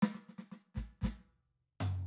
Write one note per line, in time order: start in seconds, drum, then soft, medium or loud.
0.02 snare medium
0.15 snare soft
0.29 snare soft
0.38 snare soft
0.52 snare soft
0.75 kick soft
0.75 snare soft
1.01 kick medium
1.01 snare soft
1.04 snare medium
1.80 open hi-hat loud
1.80 floor tom loud